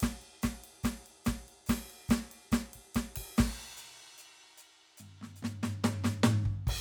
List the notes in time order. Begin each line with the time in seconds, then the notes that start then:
0.01 kick, snare, hi-hat pedal, crash
0.22 crash
0.43 kick, snare, hi-hat pedal, crash
0.64 crash
0.84 kick, snare, hi-hat pedal, crash
1.07 crash
1.25 kick, snare, hi-hat pedal, crash
1.49 crash
1.67 kick, snare, hi-hat pedal, crash
1.91 crash
2.09 kick, snare, hi-hat pedal, crash
2.32 crash
2.52 kick, snare, hi-hat pedal, crash
2.74 kick, crash
2.95 kick, snare, hi-hat pedal, crash
3.16 kick, crash
3.38 kick, snare, hi-hat pedal, crash
3.77 hi-hat pedal
4.18 hi-hat pedal
4.58 hi-hat pedal
4.98 floor tom, hi-hat pedal
5.22 snare, floor tom
5.36 hi-hat pedal
5.43 snare, floor tom
5.64 snare, floor tom
5.84 snare, floor tom
6.05 snare, floor tom
6.24 snare, floor tom
6.46 kick
6.68 kick, crash